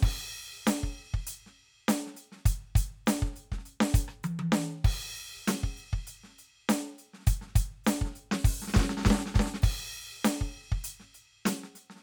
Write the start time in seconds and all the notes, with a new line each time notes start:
0.01 kick, hi-hat pedal, crash
0.66 closed hi-hat, kick, snare
0.84 kick
1.14 kick
1.27 closed hi-hat
1.47 snare
1.89 closed hi-hat, snare
2.07 snare
2.15 closed hi-hat, snare
2.32 snare
2.37 snare
2.46 closed hi-hat, kick
2.76 closed hi-hat, kick
3.07 closed hi-hat, snare, hi-hat pedal
3.23 kick, snare
3.31 snare
3.36 closed hi-hat
3.52 kick, snare
3.59 snare
3.64 closed hi-hat, snare
3.81 snare
3.95 closed hi-hat, kick
4.08 cross-stick
4.24 hi-hat pedal, high tom
4.40 high tom
4.49 kick, snare, hi-hat pedal
4.85 kick, crash
5.16 closed hi-hat
5.37 kick
5.48 closed hi-hat, snare
5.64 kick
5.78 closed hi-hat
5.93 kick
6.08 closed hi-hat
6.24 snare
6.29 snare
6.39 closed hi-hat
6.70 closed hi-hat, snare
6.99 closed hi-hat
7.14 snare
7.19 snare
7.22 snare
7.26 closed hi-hat, kick, snare
7.42 snare
7.47 snare
7.56 closed hi-hat, kick
7.84 closed hi-hat, snare, hi-hat pedal
8.02 kick, snare
8.11 snare
8.15 closed hi-hat, snare
8.32 snare
8.45 open hi-hat, kick
8.62 snare
8.68 snare
8.74 kick, snare, hi-hat pedal
8.80 snare
8.83 snare
8.90 snare
8.97 snare
9.02 snare
9.05 kick, snare, hi-hat pedal
9.11 snare
9.13 snare
9.20 snare
9.26 snare
9.29 snare
9.35 kick, snare, hi-hat pedal
9.40 snare
9.46 snare
9.54 snare
9.61 kick, hi-hat pedal, crash
9.64 kick
9.93 closed hi-hat
10.25 closed hi-hat, snare
10.42 kick
10.55 closed hi-hat
10.72 kick
10.85 closed hi-hat
11.00 snare
11.15 closed hi-hat
11.46 closed hi-hat, snare
11.64 snare
11.75 closed hi-hat, snare
11.90 snare
11.96 snare